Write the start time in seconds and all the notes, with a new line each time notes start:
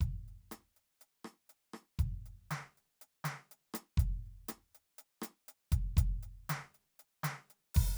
0.01 kick, closed hi-hat
0.28 closed hi-hat
0.52 cross-stick, closed hi-hat
0.77 closed hi-hat
1.01 closed hi-hat
1.25 cross-stick
1.50 closed hi-hat
1.74 cross-stick
1.99 kick, closed hi-hat
2.26 closed hi-hat
2.51 snare, closed hi-hat
2.78 closed hi-hat
3.02 closed hi-hat
3.25 snare, closed hi-hat
3.52 closed hi-hat
3.74 cross-stick, closed hi-hat
3.98 kick, closed hi-hat
4.26 closed hi-hat
4.49 cross-stick, closed hi-hat
4.75 closed hi-hat
4.99 closed hi-hat
5.22 cross-stick, closed hi-hat
5.49 closed hi-hat
5.72 kick, closed hi-hat
5.97 closed hi-hat, kick
6.23 closed hi-hat
6.50 snare, closed hi-hat
6.75 closed hi-hat
7.00 closed hi-hat
7.24 snare, closed hi-hat
7.51 closed hi-hat
7.75 kick, open hi-hat